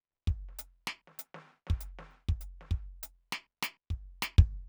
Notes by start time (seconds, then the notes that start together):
0.27 kick, closed hi-hat
0.49 snare
0.59 closed hi-hat
0.87 snare
1.07 snare
1.19 closed hi-hat
1.34 snare
1.67 kick, snare
1.80 closed hi-hat
1.99 snare
2.11 closed hi-hat
2.29 kick, snare
2.41 closed hi-hat
2.61 snare
2.71 kick, closed hi-hat
3.03 closed hi-hat
3.32 closed hi-hat, snare
3.62 closed hi-hat, snare
3.90 kick, closed hi-hat
4.22 closed hi-hat, snare
4.38 kick